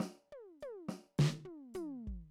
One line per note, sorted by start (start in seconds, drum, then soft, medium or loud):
0.06 snare soft
0.32 high tom soft
0.61 hi-hat pedal soft
0.61 high tom medium
0.89 snare soft
1.19 snare medium
1.19 hi-hat pedal medium
1.45 floor tom soft
1.75 floor tom medium
1.75 hi-hat pedal medium
2.07 kick soft